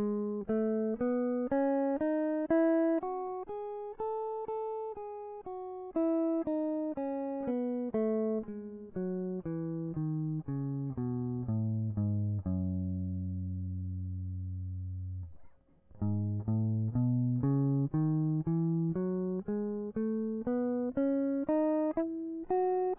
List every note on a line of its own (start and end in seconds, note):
0.00 0.46 G#3
0.50 0.98 A3
1.01 1.50 B3
1.52 1.99 C#4
2.01 2.49 D#4
2.51 3.01 E4
3.03 3.46 F#4
3.47 3.97 G#4
4.00 4.48 A4
4.49 4.97 A4
5.02 5.41 G#4
5.48 5.92 F#4
5.97 6.45 E4
6.47 6.96 D#4
6.98 7.54 C#4
7.48 7.93 B3
7.95 8.44 A3
8.46 8.94 G#3
8.97 9.44 F#3
9.46 9.96 E3
9.98 10.44 D#3
10.50 10.95 C#3
10.99 11.47 B2
11.50 11.95 A2
12.00 12.43 G#2
12.48 15.27 F#2
16.04 16.45 G#2
16.49 16.92 A2
16.97 17.45 B2
17.44 17.90 C#3
17.95 18.45 D#3
18.48 18.95 E3
18.96 19.43 F#3
19.49 19.93 G#3
19.97 20.45 A3
20.47 20.93 B3
20.97 21.46 C#4
21.49 21.94 D#4
21.97 22.48 E4
22.51 22.96 F#4